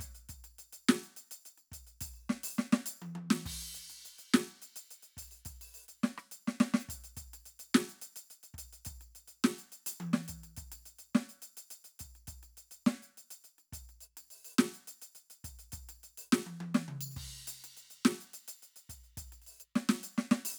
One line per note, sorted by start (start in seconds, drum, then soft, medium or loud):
0.01 kick soft
0.01 percussion medium
0.16 percussion soft
0.30 kick soft
0.30 percussion medium
0.45 percussion medium
0.60 percussion medium
0.74 percussion medium
0.90 snare loud
1.04 percussion soft
1.17 percussion medium
1.32 percussion medium
1.46 percussion medium
1.59 percussion soft
1.73 kick soft
1.73 percussion medium
1.88 percussion soft
2.02 kick soft
2.02 percussion loud
2.15 percussion soft
2.31 snare medium
2.45 percussion loud
2.59 snare medium
2.74 snare loud
2.87 percussion loud
3.03 high tom medium
3.16 high tom medium
3.31 snare loud
3.47 kick soft
3.47 crash loud
3.53 kick soft
3.56 kick soft
3.63 percussion soft
3.75 kick soft
3.75 percussion medium
3.91 percussion medium
4.06 percussion medium
4.20 percussion soft
4.35 snare loud
4.50 percussion soft
4.63 percussion medium
4.77 percussion medium
4.92 percussion soft
4.92 percussion medium
5.04 percussion soft
5.18 kick soft
5.18 percussion medium
5.23 percussion medium
5.32 percussion soft
5.46 kick soft
5.46 percussion medium
5.62 percussion medium
5.75 percussion medium
5.89 percussion medium
6.04 snare loud
6.19 cross-stick medium
6.32 percussion medium
6.49 snare medium
6.61 snare loud
6.75 snare loud
6.81 percussion medium
6.90 kick soft
6.90 percussion medium
6.95 kick soft
7.05 percussion medium
7.18 kick soft
7.18 percussion medium
7.34 percussion medium
7.47 percussion medium
7.60 percussion medium
7.76 snare loud
7.90 percussion soft
8.03 percussion medium
8.17 percussion medium
8.31 percussion soft
8.44 percussion medium
8.55 kick soft
8.59 percussion medium
8.74 percussion soft
8.86 kick soft
8.86 percussion medium
9.02 percussion soft
9.16 percussion medium
9.29 percussion soft
9.45 snare loud
9.59 percussion medium
9.73 percussion medium
9.87 percussion loud
10.01 high tom loud
10.14 snare loud
10.24 percussion soft
10.29 kick soft
10.29 percussion medium
10.45 percussion medium
10.58 kick soft
10.58 percussion medium
10.73 percussion medium
10.87 percussion medium
11.00 percussion medium
11.16 snare loud
11.30 percussion soft
11.43 percussion medium
11.58 percussion medium
11.72 percussion medium
11.85 percussion soft
12.00 kick soft
12.00 percussion medium
12.16 percussion soft
12.28 kick soft
12.28 percussion medium
12.44 percussion soft
12.58 percussion medium
12.72 percussion medium
12.87 snare loud
13.03 percussion soft
13.18 percussion medium
13.32 percussion medium
13.45 percussion soft
13.59 percussion soft
13.74 kick soft
13.74 percussion medium
13.90 percussion soft
14.02 percussion medium
14.18 percussion medium
14.31 percussion medium
14.46 percussion medium
14.60 snare loud
14.75 percussion soft
14.88 percussion medium
15.03 percussion medium
15.16 percussion soft
15.31 percussion soft
15.45 kick soft
15.45 percussion medium
15.60 percussion soft
15.73 kick soft
15.73 percussion medium
15.90 percussion medium
16.04 percussion medium
16.19 percussion medium
16.33 snare loud
16.47 high tom medium
16.61 high tom medium
16.76 snare loud
16.89 mid tom medium
17.02 percussion medium
17.12 percussion soft
17.17 kick soft
17.17 crash medium
17.23 kick soft
17.48 percussion loud
17.65 percussion medium
17.78 percussion medium
17.91 percussion medium
18.06 snare loud
18.21 percussion soft
18.34 percussion medium
18.49 percussion medium
18.63 percussion soft
18.77 percussion soft
18.90 kick soft
18.90 percussion medium
19.05 percussion soft
19.18 kick soft
19.18 percussion medium
19.33 percussion soft
19.43 percussion soft
19.48 percussion medium
19.61 percussion medium
19.61 percussion soft
19.77 snare loud
19.90 snare loud
20.04 percussion medium
20.19 snare medium
20.32 snare loud
20.46 percussion loud